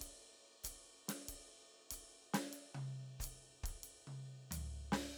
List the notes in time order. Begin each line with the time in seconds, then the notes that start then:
0.01 kick, ride
0.64 kick, hi-hat pedal, ride
1.09 snare, ride
1.29 kick, ride
1.91 kick, hi-hat pedal, ride
2.34 snare, ride
2.53 ride
2.75 high tom
3.20 kick, hi-hat pedal
3.24 ride
3.64 kick, ride
3.84 ride
4.07 high tom
4.51 floor tom, hi-hat pedal, ride
4.92 snare, crash